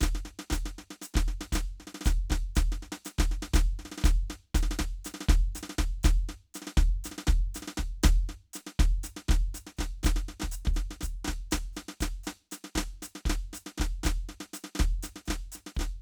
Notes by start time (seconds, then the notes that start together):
0.01 kick, snare, hi-hat pedal
0.03 snare
0.15 snare
0.25 snare
0.39 snare
0.50 kick, snare, hi-hat pedal
0.53 snare
0.66 snare
0.79 snare
0.91 snare
1.02 snare, hi-hat pedal
1.14 kick, snare
1.17 snare
1.28 snare
1.41 snare
1.53 kick, snare, hi-hat pedal
1.56 snare
1.80 snare
1.87 snare
1.95 snare
2.01 snare, hi-hat pedal
2.06 kick, snare
2.30 kick, snare
2.32 snare
2.56 kick, snare, hi-hat pedal
2.72 snare
2.83 snare
2.92 snare
3.05 snare, hi-hat pedal
3.19 kick, snare
3.32 snare
3.43 snare
3.54 kick, snare, hi-hat pedal
3.56 snare
3.79 snare
3.85 snare
3.92 snare
3.98 snare
4.02 kick, snare, hi-hat pedal
4.06 snare
4.30 snare
4.55 kick, snare, hi-hat pedal
4.63 snare
4.71 snare
4.79 kick, snare
5.05 snare, hi-hat pedal
5.14 snare
5.21 snare
5.29 kick, snare
5.55 snare, hi-hat pedal
5.63 snare
5.70 snare
5.79 kick, snare
6.04 kick, snare, hi-hat pedal
6.29 snare
6.54 snare, hi-hat pedal
6.62 snare
6.67 snare
6.77 kick, snare
7.04 snare, hi-hat pedal
7.12 snare
7.18 snare
7.27 kick, snare
7.55 snare, hi-hat pedal
7.62 snare
7.68 snare
7.78 kick, snare
8.03 kick, snare, hi-hat pedal
8.29 snare
8.54 snare, hi-hat pedal
8.67 snare
8.80 kick, snare
9.04 snare, hi-hat pedal
9.17 snare
9.29 kick, snare
9.31 snare
9.55 snare, hi-hat pedal
9.67 snare
9.77 kick, snare, hi-hat pedal
9.81 snare
10.03 kick, snare, hi-hat pedal
10.06 snare
10.16 snare
10.29 snare
10.40 snare
10.42 kick, snare
10.52 hi-hat pedal
10.65 kick, snare
10.74 snare, hi-hat pedal
10.91 snare
11.03 kick, hi-hat pedal
11.25 snare
11.28 kick, snare
11.51 kick, snare, hi-hat pedal
11.73 snare, hi-hat pedal
11.89 snare
12.01 kick, snare, hi-hat pedal
12.24 snare, hi-hat pedal
12.52 snare, hi-hat pedal
12.64 snare
12.75 kick, snare, hi-hat pedal
12.78 snare
13.03 snare, hi-hat pedal
13.16 snare
13.26 kick, snare
13.30 snare
13.53 snare, hi-hat pedal
13.67 snare
13.78 kick, snare
13.81 snare
14.04 kick, snare, hi-hat pedal
14.07 snare
14.29 snare
14.41 snare
14.54 snare, hi-hat pedal
14.64 snare
14.75 snare
14.80 kick, snare
15.03 snare, hi-hat pedal
15.16 snare
15.26 kick, snare, hi-hat pedal
15.31 snare
15.52 snare, hi-hat pedal
15.67 snare
15.75 kick, hi-hat pedal
15.79 snare
15.81 snare